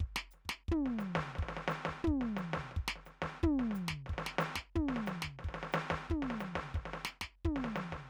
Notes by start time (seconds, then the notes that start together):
0.01 kick, snare
0.17 snare
0.31 snare, hi-hat pedal
0.46 kick, snare
0.69 kick, floor tom
0.86 snare
0.99 snare, hi-hat pedal
1.16 kick, snare
1.36 kick, snare
1.43 snare
1.49 snare
1.57 snare
1.68 snare, hi-hat pedal
1.86 kick, snare
2.04 kick, floor tom
2.22 snare
2.37 snare, hi-hat pedal
2.54 kick, snare
2.72 snare
2.77 kick
2.88 snare
2.96 snare
3.06 snare, hi-hat pedal
3.22 kick, snare
3.43 kick, floor tom
3.60 snare
3.72 snare, hi-hat pedal
3.89 kick, snare
4.07 kick, snare
4.14 snare
4.19 snare
4.27 snare
4.36 snare
4.39 snare, hi-hat pedal
4.56 kick, snare
4.75 kick, floor tom
4.89 snare
4.97 snare
5.07 snare, hi-hat pedal
5.23 kick, snare
5.39 snare
5.45 kick
5.49 snare
5.55 snare
5.63 snare
5.73 snare, hi-hat pedal
5.91 kick, snare
6.11 kick, floor tom
6.23 snare
6.31 snare
6.40 snare, hi-hat pedal
6.56 kick, snare
6.75 kick, snare
6.94 snare
7.05 snare, hi-hat pedal
7.22 kick, snare
7.45 kick, floor tom
7.57 snare
7.65 snare
7.74 snare, hi-hat pedal
7.76 snare
7.92 kick, snare